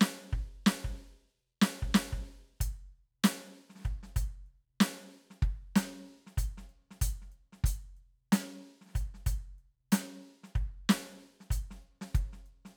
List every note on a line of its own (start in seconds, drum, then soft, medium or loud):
0.01 snare loud
0.33 kick medium
0.66 snare loud
0.84 kick soft
1.62 snare loud
1.82 kick medium
1.94 snare loud
2.13 kick medium
2.61 kick medium
2.61 closed hi-hat loud
3.24 closed hi-hat loud
3.24 snare loud
3.70 snare soft
3.76 snare soft
3.79 snare soft
3.81 kick medium
3.81 snare soft
3.86 closed hi-hat soft
4.03 snare soft
4.16 closed hi-hat medium
4.16 kick medium
4.46 closed hi-hat soft
4.80 closed hi-hat medium
4.80 snare loud
5.30 snare soft
5.42 kick medium
5.42 closed hi-hat soft
5.76 closed hi-hat medium
5.76 snare loud
6.06 closed hi-hat soft
6.27 snare soft
6.38 closed hi-hat medium
6.38 kick medium
6.58 snare soft
6.69 closed hi-hat soft
6.91 snare soft
7.01 closed hi-hat loud
7.01 kick medium
7.22 snare soft
7.32 closed hi-hat soft
7.53 snare soft
7.64 closed hi-hat medium
7.64 kick medium
7.97 closed hi-hat soft
8.32 closed hi-hat medium
8.32 snare loud
8.64 closed hi-hat soft
8.81 snare soft
8.86 snare soft
8.89 snare soft
8.93 closed hi-hat medium
8.93 kick medium
8.93 snare soft
9.14 snare soft
9.26 closed hi-hat medium
9.26 kick medium
9.58 closed hi-hat soft
9.92 closed hi-hat loud
9.92 snare loud
10.23 closed hi-hat soft
10.44 snare soft
10.55 kick medium
10.55 closed hi-hat soft
10.89 closed hi-hat medium
10.89 snare loud
11.18 snare soft
11.40 snare soft
11.51 closed hi-hat medium
11.51 kick medium
11.71 snare soft
11.82 closed hi-hat soft
12.01 snare medium
12.15 kick medium
12.15 closed hi-hat medium
12.33 snare soft
12.46 closed hi-hat soft
12.65 snare soft